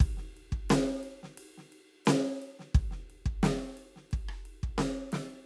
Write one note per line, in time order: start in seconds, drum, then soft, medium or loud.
0.01 kick loud
0.01 ride medium
0.18 snare soft
0.37 ride soft
0.53 kick medium
0.70 snare loud
0.70 ride medium
1.04 ride medium
1.24 snare soft
1.38 ride medium
1.58 snare soft
1.73 ride soft
2.06 snare loud
2.06 hi-hat pedal medium
2.06 ride medium
2.43 ride soft
2.60 snare soft
2.75 kick loud
2.75 ride soft
2.92 snare soft
3.11 ride soft
3.26 kick medium
3.44 snare loud
3.44 ride medium
3.78 ride medium
3.97 snare soft
4.12 kick medium
4.12 ride soft
4.29 cross-stick medium
4.46 ride soft
4.64 kick medium
4.79 snare medium
4.79 ride medium
5.13 snare medium
5.13 ride medium